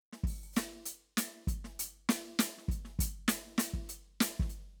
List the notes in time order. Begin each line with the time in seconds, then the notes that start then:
0.13 snare
0.24 open hi-hat, kick
0.43 open hi-hat
0.53 closed hi-hat, snare, hi-hat pedal
0.86 closed hi-hat
1.17 closed hi-hat, snare
1.47 closed hi-hat, kick
1.64 snare
1.79 closed hi-hat
2.09 closed hi-hat, snare
2.39 closed hi-hat, snare
2.58 snare
2.69 closed hi-hat, kick
2.85 snare
2.90 snare
2.99 closed hi-hat, kick
3.28 closed hi-hat, snare
3.58 closed hi-hat, snare
3.74 kick
3.87 closed hi-hat, snare
4.21 closed hi-hat, snare
4.40 kick, snare
4.50 closed hi-hat